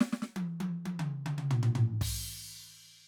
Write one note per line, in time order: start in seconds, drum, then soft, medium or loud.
0.01 snare loud
0.13 snare medium
0.22 snare medium
0.36 high tom loud
0.60 high tom loud
0.86 high tom loud
0.99 mid tom loud
1.26 mid tom loud
1.38 mid tom loud
1.51 floor tom loud
1.63 floor tom loud
1.75 floor tom loud
2.01 kick medium
2.01 crash loud